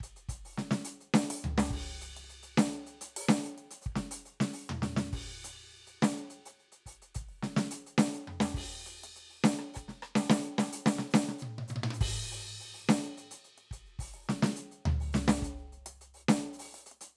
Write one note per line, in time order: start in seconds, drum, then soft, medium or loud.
0.01 closed hi-hat medium
0.01 kick soft
0.17 closed hi-hat soft
0.29 closed hi-hat medium
0.29 kick soft
0.37 kick soft
0.46 open hi-hat medium
0.54 open hi-hat soft
0.58 snare medium
0.71 snare loud
0.85 closed hi-hat loud
1.01 closed hi-hat soft
1.14 snare loud
1.31 open hi-hat loud
1.42 floor tom medium
1.42 hi-hat pedal soft
1.58 snare loud
1.65 hi-hat pedal medium
1.71 kick soft
1.71 crash medium
1.77 kick soft
1.80 kick soft
2.02 closed hi-hat medium
2.17 closed hi-hat medium
2.25 closed hi-hat soft
2.30 closed hi-hat soft
2.44 closed hi-hat medium
2.58 snare loud
2.73 closed hi-hat soft
2.87 closed hi-hat medium
3.02 closed hi-hat loud
3.17 open hi-hat loud
3.25 hi-hat pedal soft
3.29 snare loud
3.44 open hi-hat medium
3.58 closed hi-hat medium
3.71 closed hi-hat medium
3.82 hi-hat pedal medium
3.87 kick soft
3.92 kick soft
3.92 snare medium
4.12 open hi-hat loud
4.26 open hi-hat medium
4.41 snare loud
4.54 open hi-hat medium
4.70 mid tom loud
4.83 snare medium
4.97 snare loud
5.13 kick soft
5.13 hi-hat pedal soft
5.13 crash medium
5.19 kick soft
5.45 closed hi-hat loud
5.74 closed hi-hat soft
5.88 closed hi-hat soft
6.03 snare loud
6.18 closed hi-hat medium
6.31 closed hi-hat medium
6.46 open hi-hat medium
6.46 hi-hat pedal medium
6.60 open hi-hat soft
6.73 closed hi-hat medium
6.87 open hi-hat medium
6.87 kick soft
7.03 closed hi-hat medium
7.15 closed hi-hat medium
7.15 kick soft
7.22 kick soft
7.29 open hi-hat soft
7.43 snare medium
7.56 snare loud
7.56 hi-hat pedal soft
7.72 closed hi-hat loud
7.87 closed hi-hat soft
7.87 closed hi-hat medium
7.99 snare loud
8.14 open hi-hat medium
8.24 hi-hat pedal soft
8.24 mid tom medium
8.41 snare loud
8.49 hi-hat pedal soft
8.55 kick soft
8.55 crash medium
8.61 kick soft
8.72 closed hi-hat soft
8.86 closed hi-hat medium
9.04 closed hi-hat medium
9.17 closed hi-hat medium
9.30 open hi-hat soft
9.44 snare loud
9.60 cross-stick medium
9.62 cross-stick soft
9.74 open hi-hat medium
9.74 kick soft
9.74 cross-stick medium
9.74 hi-hat pedal medium
9.89 snare soft
10.03 cross-stick medium
10.16 snare loud
10.20 hi-hat pedal soft
10.30 snare loud
10.44 open hi-hat medium
10.59 snare loud
10.73 closed hi-hat loud
10.87 snare loud
10.99 snare medium
11.11 snare loud
11.11 hi-hat pedal medium
11.29 snare medium
11.39 hi-hat pedal medium
11.39 high tom medium
11.59 high tom medium
11.69 hi-hat pedal medium
11.69 high tom medium
11.77 high tom medium
11.84 high tom loud
11.91 hi-hat pedal medium
11.91 high tom medium
12.01 kick medium
12.01 crash loud
12.32 open hi-hat medium
12.48 open hi-hat soft
12.61 open hi-hat medium
12.74 open hi-hat medium
12.89 snare loud
13.04 closed hi-hat medium
13.18 closed hi-hat medium
13.32 closed hi-hat medium
13.45 closed hi-hat soft
13.58 closed hi-hat soft
13.72 closed hi-hat medium
13.72 kick soft
13.86 open hi-hat soft
14.00 open hi-hat medium
14.00 kick soft
14.15 open hi-hat soft
14.27 snare medium
14.27 hi-hat pedal soft
14.43 snare loud
14.57 closed hi-hat medium
14.72 closed hi-hat soft
14.86 floor tom loud
15.01 open hi-hat medium
15.13 snare loud
15.13 hi-hat pedal medium
15.28 snare loud
15.36 hi-hat pedal soft
15.43 closed hi-hat medium
15.43 kick soft
15.48 kick soft
15.59 closed hi-hat soft
15.73 closed hi-hat soft
15.87 closed hi-hat loud
16.02 closed hi-hat medium
16.15 open hi-hat medium
16.22 hi-hat pedal soft
16.29 snare loud
16.54 hi-hat pedal medium
16.60 open hi-hat loud
16.75 open hi-hat medium
16.87 closed hi-hat medium
16.92 closed hi-hat soft
17.02 closed hi-hat loud